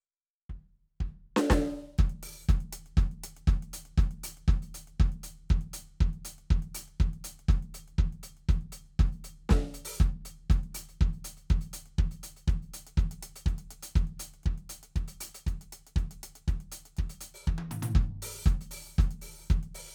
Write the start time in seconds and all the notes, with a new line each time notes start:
0.49 kick
1.00 kick
1.36 snare
1.50 kick, snare
1.98 kick, closed hi-hat
2.09 closed hi-hat
2.23 open hi-hat
2.43 hi-hat pedal
2.49 kick, closed hi-hat
2.60 closed hi-hat
2.73 closed hi-hat
2.86 closed hi-hat
2.97 kick, closed hi-hat
3.11 closed hi-hat
3.24 closed hi-hat
3.37 closed hi-hat
3.47 kick, closed hi-hat
3.62 closed hi-hat
3.73 closed hi-hat
3.85 closed hi-hat
3.98 closed hi-hat, kick
4.11 closed hi-hat
4.17 kick
4.24 closed hi-hat
4.37 closed hi-hat
4.48 kick, closed hi-hat
4.62 closed hi-hat
4.74 closed hi-hat
4.87 closed hi-hat
5.00 kick, closed hi-hat
5.12 closed hi-hat
5.23 closed hi-hat
5.38 closed hi-hat
5.49 kick, closed hi-hat
5.61 closed hi-hat
5.73 closed hi-hat
5.87 closed hi-hat
6.01 kick, closed hi-hat
6.13 closed hi-hat
6.25 closed hi-hat
6.38 closed hi-hat
6.50 kick, closed hi-hat
6.62 closed hi-hat
6.75 closed hi-hat
6.88 closed hi-hat
7.00 kick, closed hi-hat
7.13 closed hi-hat
7.24 closed hi-hat
7.39 closed hi-hat
7.49 kick, closed hi-hat
7.62 closed hi-hat
7.74 closed hi-hat
7.88 closed hi-hat
7.98 kick, closed hi-hat
8.12 closed hi-hat
8.23 closed hi-hat
8.37 closed hi-hat
8.49 closed hi-hat, kick
8.61 closed hi-hat
8.72 closed hi-hat
8.86 closed hi-hat
8.99 kick, closed hi-hat
9.12 closed hi-hat
9.24 closed hi-hat
9.49 kick, snare
9.71 closed hi-hat, kick
9.85 open hi-hat
9.96 kick, hi-hat pedal
10.01 closed hi-hat
10.12 closed hi-hat
10.21 closed hi-hat, kick
10.36 closed hi-hat
10.50 kick, closed hi-hat
10.63 closed hi-hat
10.72 closed hi-hat, kick
10.89 closed hi-hat
11.01 kick, closed hi-hat
11.13 closed hi-hat
11.24 closed hi-hat
11.37 closed hi-hat
11.50 kick, closed hi-hat
11.61 closed hi-hat
11.73 closed hi-hat
11.86 closed hi-hat
11.98 kick, closed hi-hat
12.11 closed hi-hat
12.23 closed hi-hat
12.36 closed hi-hat
12.48 kick, closed hi-hat
12.62 closed hi-hat
12.74 closed hi-hat
12.87 closed hi-hat
12.97 kick, closed hi-hat
13.11 closed hi-hat
13.23 closed hi-hat
13.36 closed hi-hat
13.46 kick, closed hi-hat
13.58 closed hi-hat
13.66 kick
13.71 closed hi-hat
13.83 closed hi-hat
13.96 kick, closed hi-hat
14.07 closed hi-hat
14.18 closed hi-hat, kick
14.34 closed hi-hat
14.43 kick, closed hi-hat
14.58 closed hi-hat
14.69 closed hi-hat
14.83 closed hi-hat
14.96 kick, closed hi-hat
15.08 closed hi-hat
15.21 closed hi-hat
15.34 closed hi-hat
15.47 kick, closed hi-hat
15.61 closed hi-hat
15.72 closed hi-hat
15.87 closed hi-hat
15.96 kick, closed hi-hat
16.11 closed hi-hat
16.23 closed hi-hat
16.35 closed hi-hat
16.48 kick, closed hi-hat
16.60 closed hi-hat
16.70 closed hi-hat, kick
16.85 closed hi-hat
16.97 kick, closed hi-hat
17.09 closed hi-hat
17.21 closed hi-hat
17.34 open hi-hat
17.44 kick, hi-hat pedal, high tom
17.58 high tom
17.71 mid tom
17.82 mid tom
17.95 kick
18.15 kick
18.22 open hi-hat
18.39 open hi-hat
18.44 kick, closed hi-hat, hi-hat pedal
18.61 closed hi-hat
18.71 open hi-hat
18.87 open hi-hat
18.95 kick, hi-hat pedal
18.99 closed hi-hat
19.11 closed hi-hat
19.21 open hi-hat
19.39 open hi-hat
19.46 hi-hat pedal
19.50 kick, closed hi-hat
19.63 closed hi-hat
19.75 open hi-hat
19.89 open hi-hat